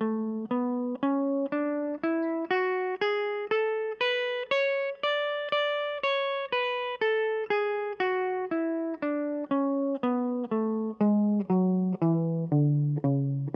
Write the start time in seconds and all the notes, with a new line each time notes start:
0.02 A3
0.52 B3
1.04 C#4
1.53 D4
2.04 E4
2.51 F#4
3.02 G#4
3.52 A4
4.02 B4
4.52 C#5
5.04 D5
5.53 D5
6.04 C#5
6.53 B4
7.02 A4
7.51 G#4
8.01 F#4
8.52 E4
9.03 D4
9.52 C#4
10.04 B3
10.53 A3
11.02 G#3
11.51 F#3
12.03 E3
12.53 D3
13.06 C#3